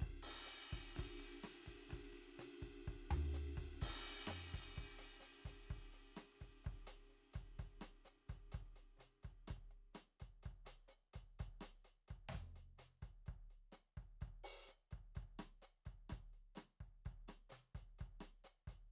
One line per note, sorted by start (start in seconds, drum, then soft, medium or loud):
0.01 kick soft
0.01 ride bell soft
0.09 kick soft
0.23 crash medium
0.46 hi-hat pedal medium
0.46 ride bell soft
0.73 kick soft
0.73 ride soft
0.79 kick soft
0.96 kick soft
0.96 snare soft
0.96 hi-hat pedal soft
0.96 ride medium
1.05 kick soft
1.20 ride soft
1.44 cross-stick soft
1.44 snare soft
1.44 hi-hat pedal medium
1.44 ride medium
1.67 kick soft
1.67 ride soft
1.90 kick soft
1.90 snare soft
1.90 ride medium
1.99 kick soft
2.14 ride soft
2.39 snare soft
2.39 hi-hat pedal medium
2.39 ride medium
2.63 kick soft
2.63 ride soft
2.68 kick soft
2.88 kick soft
2.88 ride soft
2.94 kick soft
3.11 floor tom medium
3.11 ride medium
3.34 hi-hat pedal medium
3.58 kick soft
3.58 ride medium
3.64 kick soft
3.80 kick soft
3.80 hi-hat pedal soft
3.80 crash medium
3.97 crash soft
4.28 open hi-hat medium
4.28 cross-stick medium
4.28 hi-hat pedal medium
4.28 mid tom medium
4.54 closed hi-hat soft
4.54 kick soft
4.60 kick soft
4.76 closed hi-hat soft
4.76 kick soft
4.84 kick soft
4.98 closed hi-hat medium
4.98 snare soft
5.21 closed hi-hat soft
5.21 hi-hat pedal medium
5.46 closed hi-hat soft
5.46 kick soft
5.51 kick soft
5.71 kick soft
5.71 closed hi-hat soft
5.77 kick soft
5.94 closed hi-hat soft
6.17 closed hi-hat medium
6.17 cross-stick soft
6.17 snare soft
6.41 closed hi-hat soft
6.41 kick soft
6.65 kick soft
6.65 closed hi-hat soft
6.73 kick soft
6.88 open hi-hat medium
7.09 closed hi-hat soft
7.09 hi-hat pedal soft
7.34 closed hi-hat medium
7.34 kick soft
7.41 kick soft
7.59 closed hi-hat soft
7.59 kick soft
7.65 kick soft
7.81 closed hi-hat medium
7.81 cross-stick soft
7.81 snare soft
8.06 hi-hat pedal medium
8.29 closed hi-hat soft
8.29 kick soft
8.35 kick soft
8.52 closed hi-hat medium
8.52 kick soft
8.61 kick soft
8.76 closed hi-hat soft
8.97 closed hi-hat soft
8.97 snare soft
8.97 hi-hat pedal soft
8.97 crash soft
9.24 closed hi-hat soft
9.24 kick soft
9.31 kick soft
9.48 closed hi-hat medium
9.48 kick soft
9.48 cross-stick soft
9.56 kick soft
9.71 closed hi-hat soft
9.94 closed hi-hat medium
9.94 cross-stick soft
9.94 snare soft
9.94 hi-hat pedal soft
10.20 closed hi-hat soft
10.20 kick soft
10.43 closed hi-hat soft
10.43 kick soft
10.51 kick soft
10.66 open hi-hat medium
10.66 snare soft
10.89 closed hi-hat soft
10.89 hi-hat pedal medium
11.14 closed hi-hat soft
11.14 kick soft
11.40 closed hi-hat soft
11.40 kick soft
11.47 kick soft
11.61 closed hi-hat medium
11.61 cross-stick soft
11.61 snare soft
11.85 closed hi-hat soft
12.08 closed hi-hat soft
12.08 kick soft
12.16 kick soft
12.29 closed hi-hat medium
12.29 snare soft
12.29 mid tom soft
12.35 kick soft
12.41 kick soft
12.56 closed hi-hat soft
12.78 closed hi-hat soft
12.78 snare soft
12.78 hi-hat pedal soft
13.03 closed hi-hat soft
13.03 kick soft
13.08 kick soft
13.27 closed hi-hat soft
13.27 kick soft
13.34 kick soft
13.51 closed hi-hat soft
13.73 cross-stick soft
13.73 hi-hat pedal medium
13.98 closed hi-hat soft
13.98 kick soft
14.03 kick soft
14.21 closed hi-hat soft
14.21 kick soft
14.28 kick soft
14.44 open hi-hat medium
14.68 open hi-hat soft
14.68 hi-hat pedal medium
14.91 closed hi-hat soft
14.91 kick soft
14.98 kick soft
15.16 closed hi-hat soft
15.16 kick soft
15.23 kick soft
15.39 closed hi-hat medium
15.39 cross-stick soft
15.39 snare soft
15.63 hi-hat pedal medium
15.86 closed hi-hat soft
15.86 kick soft
15.92 kick soft
16.09 closed hi-hat medium
16.09 kick soft
16.09 cross-stick soft
16.09 hi-hat pedal soft
16.18 kick soft
16.34 closed hi-hat soft
16.56 closed hi-hat soft
16.56 cross-stick soft
16.56 snare soft
16.56 hi-hat pedal medium
16.81 closed hi-hat soft
16.81 kick soft
17.06 closed hi-hat soft
17.06 kick soft
17.12 kick soft
17.28 closed hi-hat medium
17.28 cross-stick soft
17.50 closed hi-hat medium
17.50 snare soft
17.50 hi-hat pedal medium
17.75 closed hi-hat soft
17.75 kick soft
17.81 kick soft
17.99 closed hi-hat soft
17.99 kick soft
18.07 kick soft
18.21 closed hi-hat medium
18.21 cross-stick soft
18.45 hi-hat pedal medium
18.68 closed hi-hat soft
18.68 kick soft
18.73 kick soft